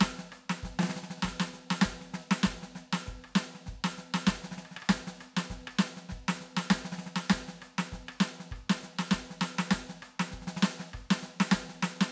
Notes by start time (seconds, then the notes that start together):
0.01 kick, snare
0.19 snare
0.32 cross-stick, hi-hat pedal
0.50 snare
0.63 kick, snare
0.79 snare
0.83 snare
0.88 snare
0.90 snare, hi-hat pedal
0.96 snare
1.03 snare
1.10 snare
1.18 snare
1.23 kick, snare
1.40 snare
1.54 snare, hi-hat pedal
1.71 snare
1.82 kick, snare
2.01 snare
2.14 snare, hi-hat pedal
2.31 snare
2.44 kick, snare
2.63 snare
2.76 snare, hi-hat pedal
2.93 snare
3.07 kick, snare
3.24 cross-stick
3.36 snare, hi-hat pedal
3.55 snare
3.67 kick, snare
3.84 snare
3.97 snare, hi-hat pedal
4.14 snare
4.27 kick, snare
4.44 snare
4.52 snare
4.58 snare, hi-hat pedal
4.65 cross-stick
4.71 snare
4.77 cross-stick
4.82 cross-stick
4.89 kick, snare
5.07 snare
5.20 cross-stick, hi-hat pedal
5.37 snare
5.50 kick, snare
5.68 cross-stick
5.79 snare, hi-hat pedal
5.97 snare
6.09 kick, snare
6.29 snare
6.41 snare, hi-hat pedal
6.57 snare
6.71 kick, snare
6.85 snare
6.92 snare
6.98 snare
7.03 snare, hi-hat pedal
7.16 snare
7.30 kick, snare
7.48 snare
7.62 cross-stick, hi-hat pedal
7.79 snare
7.92 kick, snare
8.09 cross-stick
8.21 snare, hi-hat pedal
8.40 snare
8.52 kick, cross-stick
8.70 snare
8.81 snare, hi-hat pedal
8.99 snare
9.11 kick, snare
9.31 snare
9.41 snare, hi-hat pedal
9.59 snare
9.71 kick, snare
9.89 snare
10.03 cross-stick, hi-hat pedal
10.20 snare
10.32 kick, snare
10.47 snare
10.57 snare
10.61 snare, hi-hat pedal
10.80 snare
10.94 kick, cross-stick
11.11 snare
11.22 snare, hi-hat pedal
11.40 snare
11.52 kick, snare
11.69 snare
11.83 snare, hi-hat pedal
12.01 snare